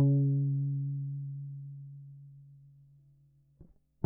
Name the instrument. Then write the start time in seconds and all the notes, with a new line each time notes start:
electric guitar
0.00 C#3